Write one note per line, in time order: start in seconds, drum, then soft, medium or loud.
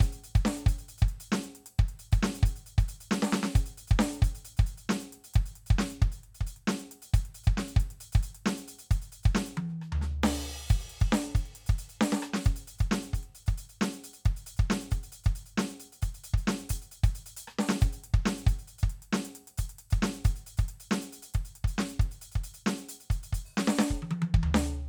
0.01 closed hi-hat medium
0.01 kick loud
0.13 closed hi-hat medium
0.24 closed hi-hat medium
0.35 closed hi-hat medium
0.35 kick loud
0.46 snare loud
0.58 closed hi-hat medium
0.67 closed hi-hat medium
0.67 kick loud
0.89 closed hi-hat medium
0.99 closed hi-hat medium
1.03 kick loud
1.09 closed hi-hat medium
1.21 closed hi-hat medium
1.32 snare loud
1.44 closed hi-hat medium
1.56 closed hi-hat medium
1.67 closed hi-hat medium
1.79 kick loud
1.79 closed hi-hat soft
1.89 closed hi-hat medium
2.00 closed hi-hat medium
2.12 closed hi-hat medium
2.12 kick loud
2.23 snare loud
2.35 closed hi-hat medium
2.43 closed hi-hat medium
2.43 kick loud
2.56 closed hi-hat medium
2.67 closed hi-hat medium
2.79 closed hi-hat medium
2.79 kick loud
2.89 closed hi-hat medium
3.01 closed hi-hat medium
3.12 snare loud
3.23 snare loud
3.33 snare loud
3.44 snare loud
3.56 closed hi-hat medium
3.56 kick loud
3.66 closed hi-hat medium
3.78 closed hi-hat medium
3.88 closed hi-hat medium
3.88 kick loud
4.00 snare loud
4.14 closed hi-hat medium
4.23 closed hi-hat medium
4.23 kick loud
4.35 closed hi-hat medium
4.45 closed hi-hat medium
4.57 closed hi-hat medium
4.57 kick loud
4.67 closed hi-hat medium
4.78 closed hi-hat medium
4.90 snare loud
5.01 closed hi-hat medium
5.13 closed hi-hat medium
5.25 closed hi-hat medium
5.34 kick loud
5.34 closed hi-hat medium
5.46 closed hi-hat medium
5.56 closed hi-hat medium
5.67 closed hi-hat medium
5.71 kick loud
5.79 snare loud
5.90 closed hi-hat soft
6.02 kick loud
6.02 closed hi-hat soft
6.12 closed hi-hat medium
6.24 closed hi-hat soft
6.35 closed hi-hat medium
6.41 kick medium
6.47 closed hi-hat medium
6.57 closed hi-hat soft
6.68 snare loud
6.80 closed hi-hat medium
6.92 closed hi-hat medium
7.03 closed hi-hat medium
7.14 closed hi-hat medium
7.14 kick loud
7.26 closed hi-hat soft
7.35 closed hi-hat medium
7.44 closed hi-hat medium
7.44 kick loud
7.58 snare loud
7.69 closed hi-hat medium
7.77 kick loud
7.77 closed hi-hat medium
7.91 closed hi-hat medium
8.01 closed hi-hat medium
8.13 closed hi-hat medium
8.13 kick loud
8.23 closed hi-hat medium
8.35 closed hi-hat medium
8.46 snare loud
8.58 closed hi-hat medium
8.68 closed hi-hat medium
8.79 closed hi-hat medium
8.91 closed hi-hat medium
8.91 kick loud
9.02 closed hi-hat medium
9.13 closed hi-hat medium
9.24 closed hi-hat medium
9.24 kick loud
9.35 snare loud
9.46 closed hi-hat medium
9.58 high tom loud
9.69 snare soft
9.82 cross-stick soft
9.93 floor tom loud
10.02 snare medium
10.24 snare loud
10.24 crash loud
10.61 closed hi-hat soft
10.70 closed hi-hat medium
10.70 kick loud
10.81 closed hi-hat soft
10.90 closed hi-hat medium
11.01 closed hi-hat soft
11.01 kick loud
11.13 snare loud
11.35 closed hi-hat medium
11.35 kick loud
11.46 closed hi-hat soft
11.56 closed hi-hat medium
11.67 closed hi-hat medium
11.67 kick loud
11.79 closed hi-hat medium
11.90 closed hi-hat medium
12.01 snare loud
12.13 snare loud
12.23 cross-stick medium
12.34 snare loud
12.45 closed hi-hat medium
12.45 kick loud
12.56 closed hi-hat medium
12.68 closed hi-hat medium
12.79 closed hi-hat medium
12.79 kick loud
12.92 snare loud
13.03 closed hi-hat soft
13.14 closed hi-hat medium
13.14 kick medium
13.24 closed hi-hat soft
13.35 closed hi-hat medium
13.47 closed hi-hat medium
13.47 kick loud
13.58 closed hi-hat medium
13.70 closed hi-hat medium
13.82 snare loud
13.94 closed hi-hat medium
14.04 closed hi-hat medium
14.14 closed hi-hat medium
14.26 kick loud
14.26 closed hi-hat medium
14.37 closed hi-hat medium
14.47 closed hi-hat medium
14.57 closed hi-hat soft
14.57 kick loud
14.71 snare loud
14.81 closed hi-hat soft
14.91 closed hi-hat medium
14.91 kick medium
15.04 closed hi-hat medium
15.13 closed hi-hat medium
15.24 closed hi-hat soft
15.24 kick loud
15.36 closed hi-hat medium
15.46 closed hi-hat soft
15.58 snare loud
15.70 closed hi-hat soft
15.80 closed hi-hat medium
15.93 closed hi-hat soft
16.02 closed hi-hat medium
16.02 kick medium
16.15 closed hi-hat medium
16.24 closed hi-hat medium
16.34 closed hi-hat soft
16.34 kick loud
16.48 snare loud
16.59 closed hi-hat soft
16.70 closed hi-hat loud
16.70 kick medium
16.82 closed hi-hat soft
16.92 closed hi-hat medium
17.04 closed hi-hat medium
17.04 kick loud
17.16 closed hi-hat medium
17.26 closed hi-hat medium
17.37 closed hi-hat loud
17.48 cross-stick medium
17.59 snare loud
17.69 snare loud
17.82 closed hi-hat medium
17.82 kick loud
17.93 closed hi-hat medium
18.04 closed hi-hat medium
18.14 kick loud
18.14 closed hi-hat soft
18.26 snare loud
18.38 closed hi-hat medium
18.47 closed hi-hat medium
18.47 kick loud
18.59 closed hi-hat soft
18.68 closed hi-hat medium
18.79 closed hi-hat medium
18.84 kick loud
18.90 closed hi-hat medium
19.03 closed hi-hat medium
19.13 snare loud
19.25 closed hi-hat medium
19.36 closed hi-hat medium
19.48 closed hi-hat medium
19.58 closed hi-hat loud
19.58 kick medium
19.70 closed hi-hat medium
19.79 closed hi-hat medium
19.91 closed hi-hat medium
19.91 kick loud
20.03 snare loud
20.14 closed hi-hat medium
20.25 closed hi-hat medium
20.25 kick loud
20.36 closed hi-hat soft
20.47 closed hi-hat medium
20.58 closed hi-hat medium
20.58 kick loud
20.69 closed hi-hat medium
20.81 closed hi-hat medium
20.92 snare loud
21.02 closed hi-hat medium
21.13 closed hi-hat medium
21.23 closed hi-hat medium
21.34 kick medium
21.34 closed hi-hat medium
21.45 closed hi-hat medium
21.56 closed hi-hat medium
21.65 closed hi-hat medium
21.65 kick loud
21.79 snare loud
21.89 closed hi-hat medium
22.00 kick loud
22.00 closed hi-hat medium
22.12 closed hi-hat medium
22.22 closed hi-hat medium
22.32 closed hi-hat soft
22.32 kick medium
22.44 closed hi-hat medium
22.55 closed hi-hat medium
22.67 snare loud
22.79 closed hi-hat soft
22.89 closed hi-hat loud
23.01 closed hi-hat medium
23.11 closed hi-hat medium
23.11 kick loud
23.24 closed hi-hat medium
23.33 open hi-hat medium
23.33 kick medium
23.46 open hi-hat medium
23.54 snare loud
23.54 hi-hat pedal soft
23.68 snare loud
23.79 snare loud
23.91 kick medium
23.91 hi-hat pedal soft
24.03 high tom medium
24.11 high tom loud
24.22 high tom loud
24.35 kick loud
24.44 floor tom loud
24.55 snare loud